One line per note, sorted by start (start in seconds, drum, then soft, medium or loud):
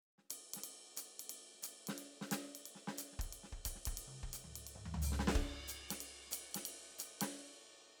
0.18 snare soft
0.23 snare soft
0.30 hi-hat pedal medium
0.30 ride medium
0.53 snare soft
0.53 ride medium
0.63 ride medium
0.96 hi-hat pedal medium
0.96 ride medium
1.19 ride medium
1.29 ride medium
1.53 snare soft
1.62 hi-hat pedal medium
1.62 ride medium
1.87 snare medium
1.87 ride medium
1.98 ride medium
2.21 snare soft
2.31 snare medium
2.31 hi-hat pedal loud
2.31 ride medium
2.55 ride medium
2.65 ride medium
2.75 snare soft
2.87 snare soft
2.98 hi-hat pedal medium
2.98 ride medium
3.12 snare soft
3.19 kick soft
3.19 ride medium
3.32 ride medium
3.43 snare soft
3.52 kick soft
3.65 kick soft
3.65 hi-hat pedal medium
3.65 ride medium
3.75 snare soft
3.85 kick soft
3.85 ride medium
3.97 ride medium
4.07 high tom soft
4.23 kick soft
4.33 hi-hat pedal medium
4.33 ride medium
4.44 floor tom soft
4.55 ride medium
4.67 ride medium
4.75 mid tom soft
4.85 floor tom medium
4.94 floor tom medium
5.02 hi-hat pedal loud
5.02 high tom soft
5.12 snare soft
5.19 snare medium
5.27 snare medium
5.35 kick medium
5.35 ride medium
5.68 hi-hat pedal loud
5.68 ride medium
5.88 snare soft
5.88 hi-hat pedal soft
5.88 ride loud
6.00 ride medium
6.26 snare soft
6.31 hi-hat pedal loud
6.31 ride loud
6.50 hi-hat pedal soft
6.50 ride loud
6.55 snare soft
6.65 ride medium
6.90 snare soft
6.98 hi-hat pedal medium
6.98 ride medium
7.21 snare medium
7.21 ride loud